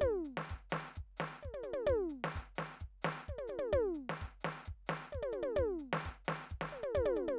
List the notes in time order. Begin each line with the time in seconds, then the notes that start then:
0.01 kick, high tom
0.25 hi-hat pedal
0.37 snare
0.49 closed hi-hat, kick
0.70 snare, hi-hat pedal
0.96 closed hi-hat, kick
1.17 snare, hi-hat pedal
1.43 kick, high tom
1.54 high tom
1.63 hi-hat pedal, high tom
1.73 high tom
1.87 kick, high tom
2.09 hi-hat pedal
2.24 snare
2.36 closed hi-hat, kick
2.56 snare, hi-hat pedal
2.80 closed hi-hat, kick
3.02 snare, hi-hat pedal
3.29 kick, high tom
3.38 high tom
3.48 hi-hat pedal, high tom
3.59 high tom
3.73 kick, high tom
3.94 hi-hat pedal
4.10 snare
4.21 closed hi-hat, kick
4.41 hi-hat pedal
4.45 snare
4.66 closed hi-hat, kick
4.87 snare, hi-hat pedal
5.12 kick, high tom
5.23 high tom
5.32 hi-hat pedal
5.43 high tom
5.56 kick, high tom
5.79 hi-hat pedal
5.93 snare
6.05 closed hi-hat, kick
6.25 snare, hi-hat pedal
6.50 kick, closed hi-hat
6.61 snare
6.70 hi-hat pedal, high tom
6.83 high tom
6.95 kick, high tom
7.06 high tom
7.16 hi-hat pedal, high tom
7.28 high tom